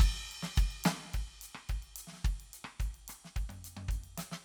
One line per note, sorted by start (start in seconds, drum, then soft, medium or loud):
0.01 kick loud
0.01 ride bell medium
0.13 snare soft
0.32 ride soft
0.43 snare medium
0.57 kick loud
0.57 hi-hat pedal medium
0.57 ride medium
0.71 ride soft
0.80 kick soft
0.85 snare loud
0.85 ride medium
1.00 cross-stick soft
1.15 kick medium
1.15 ride medium
1.28 cross-stick soft
1.42 hi-hat pedal medium
1.42 ride medium
1.56 cross-stick medium
1.70 kick medium
1.70 hi-hat pedal soft
1.70 ride soft
1.83 ride soft
1.97 hi-hat pedal medium
1.97 ride medium
2.08 snare soft
2.13 snare soft
2.16 snare soft
2.20 snare soft
2.24 kick medium
2.24 snare soft
2.24 hi-hat pedal soft
2.24 ride soft
2.41 ride soft
2.54 hi-hat pedal medium
2.54 ride medium
2.65 cross-stick medium
2.81 kick medium
2.81 hi-hat pedal soft
2.81 ride soft
2.95 ride soft
3.09 cross-stick medium
3.09 hi-hat pedal medium
3.09 ride medium
3.25 snare soft
3.37 kick medium
3.37 ride soft
3.50 high tom medium
3.50 ride soft
3.65 hi-hat pedal medium
3.65 ride medium
3.78 high tom medium
3.89 kick medium
3.89 hi-hat pedal soft
3.89 ride soft
4.05 ride soft
4.18 snare medium
4.18 hi-hat pedal medium
4.18 ride medium
4.32 snare medium